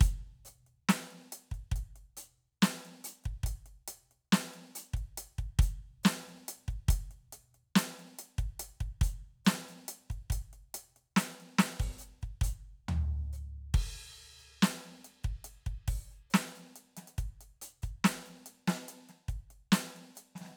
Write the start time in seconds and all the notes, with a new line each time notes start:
0.01 open hi-hat, kick
0.45 closed hi-hat, hi-hat pedal
0.67 closed hi-hat
0.89 snare, closed hi-hat
1.11 closed hi-hat
1.32 closed hi-hat
1.51 kick, closed hi-hat
1.72 kick
1.76 closed hi-hat
1.96 closed hi-hat
2.17 open hi-hat
2.62 snare, closed hi-hat, hi-hat pedal
2.85 closed hi-hat
3.04 closed hi-hat
3.24 kick, closed hi-hat
3.43 kick, closed hi-hat
3.66 closed hi-hat
3.88 closed hi-hat
4.11 closed hi-hat
4.32 snare, closed hi-hat
4.54 closed hi-hat
4.75 closed hi-hat
4.93 kick, closed hi-hat
5.17 closed hi-hat
5.38 kick, closed hi-hat
5.59 open hi-hat, kick
6.03 snare, hi-hat pedal
6.13 snare
6.29 closed hi-hat
6.48 closed hi-hat
6.68 kick, closed hi-hat
6.88 kick, closed hi-hat
7.11 closed hi-hat
7.32 closed hi-hat
7.54 closed hi-hat
7.76 snare, closed hi-hat
7.99 closed hi-hat
8.19 closed hi-hat
8.38 kick, closed hi-hat
8.60 closed hi-hat
8.80 kick, closed hi-hat
9.01 open hi-hat, kick
9.45 snare, closed hi-hat, hi-hat pedal
9.53 snare
9.68 closed hi-hat
9.88 closed hi-hat
10.10 kick, closed hi-hat
10.30 kick, closed hi-hat
10.53 closed hi-hat
10.74 closed hi-hat
10.96 closed hi-hat
11.16 snare, closed hi-hat
11.40 closed hi-hat
11.59 snare, closed hi-hat
11.66 snare
11.80 open hi-hat, kick
11.98 closed hi-hat, hi-hat pedal
12.22 closed hi-hat, kick
12.41 open hi-hat, kick
12.88 floor tom
13.33 hi-hat pedal
13.74 kick, crash
14.39 closed hi-hat
14.62 closed hi-hat, snare
14.84 closed hi-hat
15.05 closed hi-hat
15.24 kick, closed hi-hat
15.44 closed hi-hat
15.66 kick, closed hi-hat
15.88 kick, open hi-hat
16.10 open hi-hat
16.30 snare, hi-hat pedal
16.34 closed hi-hat
16.55 closed hi-hat
16.76 closed hi-hat
16.97 snare, closed hi-hat
17.07 closed hi-hat
17.18 kick, closed hi-hat
17.41 closed hi-hat
17.62 closed hi-hat
17.82 closed hi-hat, kick
18.04 closed hi-hat, snare
18.25 closed hi-hat
18.46 closed hi-hat
18.67 snare, closed hi-hat
18.88 closed hi-hat
19.09 snare, closed hi-hat
19.28 kick, closed hi-hat
19.50 closed hi-hat
19.72 open hi-hat, snare
19.96 open hi-hat
20.15 closed hi-hat, hi-hat pedal
20.35 snare, closed hi-hat
20.41 snare
20.44 snare
20.52 snare